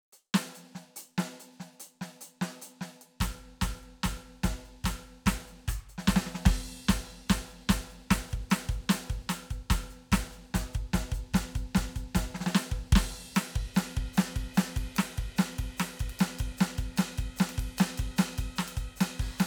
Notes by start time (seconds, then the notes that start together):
0.13 closed hi-hat
0.34 snare
0.55 closed hi-hat
0.75 snare
0.96 closed hi-hat
1.18 snare
1.32 hi-hat pedal
1.40 closed hi-hat
1.53 hi-hat pedal
1.60 snare
1.72 hi-hat pedal
1.80 closed hi-hat
2.01 snare
2.21 closed hi-hat
2.41 snare
2.62 closed hi-hat
2.81 snare
3.01 closed hi-hat
3.20 closed hi-hat, kick, snare
3.61 closed hi-hat, kick, snare
3.83 closed hi-hat
4.03 closed hi-hat, kick, snare
4.43 closed hi-hat, kick, snare
4.64 closed hi-hat
4.84 closed hi-hat, kick, snare
5.05 closed hi-hat
5.26 closed hi-hat, kick, snare
5.36 kick
5.47 closed hi-hat
5.68 closed hi-hat, kick, cross-stick
5.89 closed hi-hat
5.98 snare
6.07 kick, snare
6.16 kick, snare
6.35 snare
6.46 kick, snare, crash
6.65 closed hi-hat
6.89 closed hi-hat, kick, snare
7.10 closed hi-hat
7.29 closed hi-hat, kick, snare
7.49 closed hi-hat
7.69 closed hi-hat, kick, snare
7.90 closed hi-hat
8.11 closed hi-hat, kick, snare
8.30 closed hi-hat, kick
8.50 closed hi-hat, snare
8.69 closed hi-hat, kick
8.89 closed hi-hat, snare
8.94 snare
9.10 closed hi-hat, kick
9.19 kick
9.29 closed hi-hat, snare
9.50 closed hi-hat, kick
9.70 closed hi-hat, kick, snare
9.90 closed hi-hat
10.12 closed hi-hat, kick, snare
10.32 closed hi-hat
10.54 closed hi-hat, kick, snare
10.73 closed hi-hat, kick
10.93 closed hi-hat, kick, snare
11.12 closed hi-hat, kick
11.34 closed hi-hat, kick, snare
11.55 closed hi-hat, kick
11.75 closed hi-hat, kick, snare
11.95 closed hi-hat, kick
12.15 closed hi-hat, kick, snare
12.29 kick
12.34 snare
12.41 snare
12.46 snare
12.55 snare
12.71 kick
12.92 kick, snare, crash
13.35 snare, hi-hat pedal, ride
13.56 kick, ride
13.74 snare, hi-hat pedal, ride
13.97 kick, ride
14.13 hi-hat pedal
14.18 snare, ride
14.36 kick, ride
14.54 snare, hi-hat pedal, ride
14.76 kick, ride
14.95 snare, hi-hat pedal, ride
15.18 kick, ride
15.36 snare, hi-hat pedal, ride
15.59 kick, ride
15.77 snare, hi-hat pedal, ride
16.00 kick, ride bell
16.10 ride
16.19 snare, hi-hat pedal, ride bell
16.39 kick, ride bell
16.57 snare, hi-hat pedal, ride bell
16.78 kick, ride bell
16.96 snare, hi-hat pedal, ride bell
17.18 kick, ride bell
17.36 snare, hi-hat pedal, ride bell
17.49 ride
17.58 kick
17.77 snare, hi-hat pedal, ride bell
17.98 kick, ride bell
18.16 snare, hi-hat pedal, ride bell
18.38 kick, ride bell
18.56 snare, hi-hat pedal
18.68 ride bell
18.77 kick, ride bell
18.96 hi-hat pedal
19.01 snare, ride bell
19.20 kick, crash
19.38 snare, hi-hat pedal, ride